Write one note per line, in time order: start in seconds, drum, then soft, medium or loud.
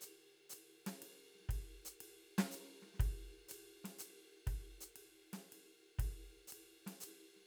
0.01 hi-hat pedal medium
0.01 ride soft
0.50 hi-hat pedal medium
0.50 ride soft
0.86 snare soft
0.86 ride medium
1.02 ride medium
1.35 snare soft
1.38 snare soft
1.40 snare soft
1.49 kick soft
1.49 ride soft
1.85 hi-hat pedal medium
2.01 ride medium
2.38 snare medium
2.38 ride medium
2.51 hi-hat pedal medium
2.51 ride soft
2.82 snare soft
2.87 snare soft
2.91 snare soft
2.94 snare soft
3.00 kick medium
3.00 ride medium
3.49 hi-hat pedal medium
3.49 ride medium
3.84 snare soft
3.84 ride soft
3.99 hi-hat pedal medium
3.99 ride soft
4.47 kick soft
4.47 ride soft
4.81 hi-hat pedal medium
4.96 ride soft
5.33 snare soft
5.33 ride soft
5.52 ride soft
5.99 kick soft
5.99 ride medium
6.48 hi-hat pedal medium
6.52 ride medium
6.86 snare soft
6.86 ride soft
7.00 hi-hat pedal medium
7.00 ride soft
7.36 snare soft
7.41 snare soft